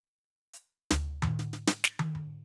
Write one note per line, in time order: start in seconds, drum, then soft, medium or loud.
0.54 hi-hat pedal medium
0.91 snare loud
0.91 floor tom loud
1.22 mid tom loud
1.22 high tom loud
1.39 snare soft
1.53 snare soft
1.68 snare loud
1.84 snare loud
1.99 high tom loud
2.15 mid tom medium